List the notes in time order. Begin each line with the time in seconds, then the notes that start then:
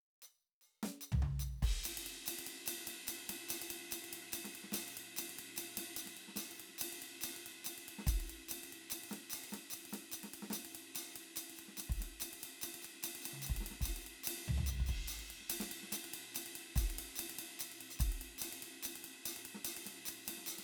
0.22 hi-hat pedal
0.61 hi-hat pedal
0.83 snare
1.01 hi-hat pedal
1.12 floor tom
1.22 high tom
1.39 hi-hat pedal
1.62 kick, crash, ride
1.83 hi-hat pedal, ride
1.97 ride
2.03 hi-hat pedal, ride
2.16 snare
2.24 snare, hi-hat pedal, ride
2.39 ride
2.45 hi-hat pedal, ride
2.66 hi-hat pedal, ride
2.86 hi-hat pedal, ride
3.07 hi-hat pedal, ride
3.27 snare, hi-hat pedal, ride
3.49 hi-hat pedal, ride
3.54 snare
3.61 ride
3.69 hi-hat pedal, ride
3.91 hi-hat pedal, ride
4.04 ride
4.10 hi-hat pedal, ride
4.24 snare
4.32 hi-hat pedal, ride
4.44 snare, ride
4.51 hi-hat pedal, ride
4.63 snare
4.72 snare, hi-hat pedal, ride
4.88 ride
4.92 hi-hat pedal
4.97 ride
5.07 snare
5.16 hi-hat pedal, ride
5.29 ride
5.35 hi-hat pedal, ride
5.48 snare
5.56 hi-hat pedal, ride
5.74 snare, hi-hat pedal, ride
5.96 hi-hat pedal, ride
6.05 snare, ride
6.17 ride
6.28 snare
6.36 snare, hi-hat pedal, ride
6.51 ride
6.55 hi-hat pedal
6.59 ride
6.69 snare
6.78 snare, hi-hat pedal, ride
6.92 ride
6.98 hi-hat pedal, ride
7.13 snare
7.21 hi-hat pedal, ride
7.36 ride
7.46 ride
7.64 hi-hat pedal, ride
7.78 ride
7.88 ride
7.98 snare
8.06 kick, hi-hat pedal, ride
8.20 ride
8.27 hi-hat pedal, ride
8.41 snare
8.48 hi-hat pedal, ride
8.63 ride
8.68 hi-hat pedal
8.72 ride
8.90 hi-hat pedal, ride
9.03 ride
9.09 snare, hi-hat pedal, ride
9.30 hi-hat pedal, ride
9.44 ride
9.49 snare, hi-hat pedal
9.54 ride
9.70 hi-hat pedal, ride
9.85 ride
9.89 snare, hi-hat pedal
9.93 ride
10.11 hi-hat pedal, ride
10.23 snare, ride
10.31 hi-hat pedal, ride
10.42 snare
10.50 snare, hi-hat pedal, ride
10.65 ride
10.71 hi-hat pedal, ride
10.95 hi-hat pedal, ride
11.16 ride
11.36 hi-hat pedal, ride
11.50 ride
11.55 hi-hat pedal, ride
11.68 snare
11.77 snare, hi-hat pedal, ride
11.89 kick, ride
11.97 snare, hi-hat pedal
12.02 ride
12.20 hi-hat pedal, ride
12.33 ride
12.40 hi-hat pedal, ride
12.61 hi-hat pedal, ride
12.74 ride
12.82 hi-hat pedal, ride
12.94 snare
13.03 hi-hat pedal, ride
13.15 ride
13.22 hi-hat pedal, ride
13.33 high tom
13.42 hi-hat pedal
13.46 kick, ride
13.56 hi-hat pedal, ride
13.60 snare
13.66 ride
13.70 snare
13.81 kick, hi-hat pedal
13.85 ride
13.96 ride
14.01 hi-hat pedal
14.06 ride
14.23 hi-hat pedal, ride
14.36 snare
14.44 floor tom, hi-hat pedal
14.57 floor tom
14.66 hi-hat pedal, high tom
14.80 kick
14.86 kick, hi-hat pedal, ride
15.07 hi-hat pedal, ride
15.19 ride
15.27 hi-hat pedal, ride
15.40 snare
15.49 hi-hat pedal, ride
15.58 kick, snare, ride
15.69 hi-hat pedal, ride
15.83 snare
15.92 snare, hi-hat pedal, ride
16.04 ride
16.11 hi-hat pedal, ride
16.34 hi-hat pedal, ride
16.46 ride
16.55 ride
16.76 kick, snare, hi-hat pedal, ride
16.90 ride
16.98 ride
17.16 hi-hat pedal, ride
17.29 ride
17.38 ride
17.59 hi-hat pedal, ride
17.71 ride
17.80 ride
17.90 percussion
17.99 kick, hi-hat pedal, ride
18.12 ride
18.21 ride
18.38 hi-hat pedal, ride
18.52 ride
18.62 ride
18.83 hi-hat pedal, ride
18.95 ride
19.04 ride
19.17 snare
19.25 hi-hat pedal, ride
19.36 ride
19.45 ride
19.54 snare
19.64 hi-hat pedal, ride
19.76 ride
19.84 snare, hi-hat pedal, ride
20.05 hi-hat pedal, ride
20.25 snare, hi-hat pedal, ride
20.37 snare
20.46 hi-hat pedal, ride
20.58 snare, ride